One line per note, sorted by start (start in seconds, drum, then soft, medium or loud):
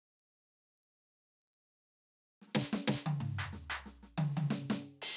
2.41 snare soft
2.47 snare soft
2.51 snare soft
2.55 snare loud
2.73 snare loud
2.87 snare loud
3.06 high tom loud
3.20 mid tom loud
3.38 percussion loud
3.53 snare medium
3.70 percussion loud
3.86 snare soft
4.03 snare soft
4.17 high tom loud
4.37 high tom loud
4.50 snare loud
4.70 snare loud
5.02 crash loud
5.02 ride loud